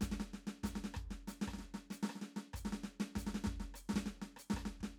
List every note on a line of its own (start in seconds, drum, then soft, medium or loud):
0.01 kick soft
0.01 snare medium
0.01 hi-hat pedal medium
0.12 snare soft
0.20 snare soft
0.33 snare soft
0.47 snare soft
0.63 kick soft
0.63 snare soft
0.63 hi-hat pedal medium
0.76 snare soft
0.84 snare soft
0.94 kick soft
0.94 cross-stick medium
1.11 snare soft
1.28 snare soft
1.28 hi-hat pedal medium
1.42 snare medium
1.47 kick soft
1.47 cross-stick medium
1.54 snare soft
1.59 snare soft
1.74 snare soft
1.90 snare soft
1.90 hi-hat pedal medium
2.03 snare medium
2.09 cross-stick medium
2.15 snare soft
2.21 snare soft
2.36 snare soft
2.54 kick soft
2.54 cross-stick soft
2.54 hi-hat pedal medium
2.65 snare soft
2.73 snare soft
2.84 snare soft
3.00 snare medium
3.15 kick soft
3.15 snare soft
3.15 hi-hat pedal medium
3.27 snare soft
3.34 snare soft
3.44 kick soft
3.44 snare medium
3.55 kick soft
3.60 snare soft
3.74 cross-stick soft
3.74 hi-hat pedal medium
3.89 snare medium
3.93 kick soft
3.93 snare medium
4.06 snare soft
4.22 snare soft
4.36 cross-stick soft
4.36 hi-hat pedal medium
4.50 kick soft
4.50 snare medium
4.57 cross-stick medium
4.60 cross-stick soft
4.65 snare soft
4.80 kick soft
4.80 snare soft